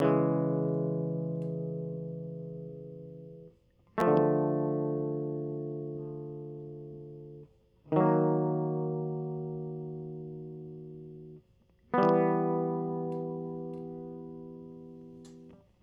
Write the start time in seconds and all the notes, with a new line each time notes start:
0.00 C#3 E3
0.04 E2 G#3
3.98 F3 A3
4.08 D3
4.14 E2
7.93 D#3 F#3
8.00 A#3
11.94 B3
11.98 G3
12.03 E3